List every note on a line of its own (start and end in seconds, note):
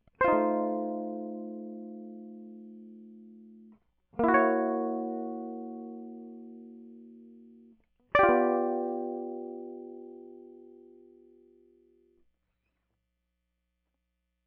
0.21 3.74 F4
0.21 2.96 C5
0.28 3.78 D#4
0.33 3.78 A3
4.20 7.76 A#3
4.24 7.76 E4
4.28 7.75 F#4
4.34 6.72 C#5
8.15 10.36 D5
8.19 12.20 G4
8.23 12.25 F4
8.29 12.20 B3